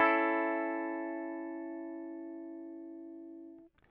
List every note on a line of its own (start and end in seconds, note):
0.00 2.35 A4